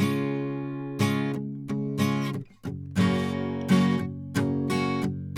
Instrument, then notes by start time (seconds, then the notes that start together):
acoustic guitar
0.00 C#3 G#3 C#4 F4
1.00 C#3 G#3 C#4 F4
1.35 C#3 G#3
1.70 C#3 G#3
1.99 C#3 G#3 C#4 F4
2.35 C#3
2.66 F#2 C#3
2.97 F#2 C#3 F#3 A#3
3.01 C#4 F#4
3.70 F#2 C#3 F#3 A#3 C#4 F#4
4.00 F#2 C#3
4.36 F#2 C#3 F#3 A#3
4.41 C#4
4.70 F#3 A#3 C#4 F#4
5.03 F#2 C#3